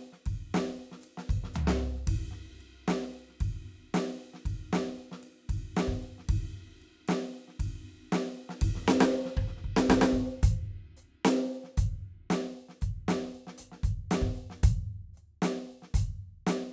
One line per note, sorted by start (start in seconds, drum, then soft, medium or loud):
0.01 ride soft
0.13 snare soft
0.26 kick medium
0.26 ride medium
0.55 snare loud
0.55 ride medium
0.79 ride soft
0.92 snare soft
1.01 hi-hat pedal soft
1.01 ride medium
1.18 snare medium
1.30 kick medium
1.30 ride bell medium
1.44 snare soft
1.54 floor tom loud
1.54 hi-hat pedal medium
1.67 snare loud
1.80 floor tom soft
1.96 snare soft
2.07 kick medium
2.07 ride loud
2.31 snare soft
2.61 ride soft
2.88 snare loud
2.88 ride medium
3.01 snare soft
3.14 ride soft
3.29 snare soft
3.41 kick medium
3.41 ride medium
3.94 snare loud
3.94 ride medium
4.20 ride soft
4.34 snare soft
4.46 kick medium
4.46 ride medium
4.73 snare loud
4.73 ride soft
4.99 ride soft
5.12 snare medium
5.23 ride soft
5.49 kick medium
5.49 ride medium
5.77 snare loud
5.77 ride medium
5.88 kick medium
5.88 snare soft
6.03 ride soft
6.18 snare soft
6.29 kick loud
6.29 ride loud
6.57 ride soft
6.82 ride soft
7.08 snare loud
7.08 ride medium
7.34 ride soft
7.48 snare soft
7.60 kick medium
7.60 ride medium
8.12 snare loud
8.12 ride medium
8.50 snare medium
8.62 kick loud
8.62 ride loud
8.75 snare soft
8.82 snare soft
8.85 snare soft
8.85 hi-hat pedal medium
8.88 snare loud
9.01 snare loud
9.26 snare soft
9.37 kick medium
9.37 cross-stick medium
9.48 snare soft
9.57 snare soft
9.64 kick medium
9.77 snare loud
9.89 kick medium
9.89 snare loud
10.02 snare loud
10.13 kick medium
10.43 closed hi-hat loud
10.43 kick loud
10.97 hi-hat pedal soft
11.25 closed hi-hat loud
11.25 snare loud
11.64 snare soft
11.77 closed hi-hat loud
11.77 kick loud
12.30 closed hi-hat loud
12.30 snare loud
12.58 closed hi-hat soft
12.69 snare soft
12.82 closed hi-hat medium
12.82 kick medium
13.08 closed hi-hat medium
13.08 snare loud
13.25 snare soft
13.35 closed hi-hat soft
13.47 snare soft
13.58 closed hi-hat medium
13.58 kick soft
13.72 snare soft
13.84 closed hi-hat medium
13.84 kick medium
14.11 closed hi-hat loud
14.11 snare loud
14.22 kick medium
14.28 snare soft
14.35 closed hi-hat soft
14.50 snare soft
14.63 closed hi-hat loud
14.63 kick loud
15.14 closed hi-hat soft
15.14 hi-hat pedal soft
15.42 closed hi-hat loud
15.42 snare loud
15.68 kick soft
15.68 closed hi-hat soft
15.82 snare soft
15.94 closed hi-hat loud
15.94 kick loud
16.47 closed hi-hat loud
16.47 snare loud